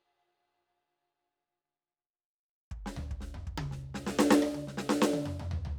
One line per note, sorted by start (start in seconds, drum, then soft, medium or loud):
2.71 kick soft
2.86 snare medium
2.96 floor tom medium
3.11 kick soft
3.20 snare soft
3.34 mid tom medium
3.47 kick soft
3.58 high tom medium
3.71 snare soft
3.94 snare medium
4.06 snare medium
4.19 snare loud
4.30 snare loud
4.42 cross-stick medium
4.54 high tom medium
4.67 snare soft
4.89 snare loud
5.02 snare loud
5.13 high tom medium
5.25 mid tom medium
5.39 mid tom medium
5.51 floor tom medium
5.65 floor tom medium